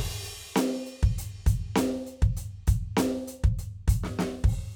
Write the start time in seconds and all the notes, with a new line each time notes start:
0.24 closed hi-hat
0.56 closed hi-hat, snare
0.86 closed hi-hat
1.03 kick, snare
1.18 closed hi-hat
1.46 closed hi-hat, kick
1.76 closed hi-hat, snare
2.06 closed hi-hat
2.22 kick
2.37 closed hi-hat
2.67 closed hi-hat, kick
2.97 closed hi-hat, snare
3.27 closed hi-hat
3.44 kick
3.59 closed hi-hat
3.88 closed hi-hat, kick
4.04 snare
4.19 snare
4.44 open hi-hat, kick
4.51 open hi-hat